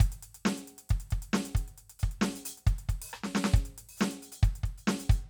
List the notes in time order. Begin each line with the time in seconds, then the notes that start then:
0.01 kick, closed hi-hat
0.13 closed hi-hat
0.23 closed hi-hat
0.35 closed hi-hat
0.46 snare
0.58 closed hi-hat
0.68 closed hi-hat
0.79 closed hi-hat
0.90 kick, closed hi-hat
1.01 closed hi-hat
1.11 kick, closed hi-hat
1.23 closed hi-hat
1.34 snare
1.46 closed hi-hat
1.56 kick, closed hi-hat
1.69 closed hi-hat
1.79 closed hi-hat
1.90 closed hi-hat
2.00 closed hi-hat, kick
2.12 closed hi-hat
2.22 snare
2.36 closed hi-hat
2.46 closed hi-hat
2.58 closed hi-hat
2.67 kick, closed hi-hat
2.79 closed hi-hat
2.90 kick, closed hi-hat
3.03 open hi-hat
3.10 hi-hat pedal
3.14 cross-stick
3.24 snare
3.36 snare
3.45 snare
3.54 kick, closed hi-hat
3.66 closed hi-hat
3.79 closed hi-hat
3.90 open hi-hat
3.98 snare, hi-hat pedal
4.12 closed hi-hat
4.23 closed hi-hat
4.33 closed hi-hat
4.44 kick, closed hi-hat
4.56 closed hi-hat
4.64 kick
4.79 closed hi-hat
4.88 snare
5.00 closed hi-hat
5.10 closed hi-hat, kick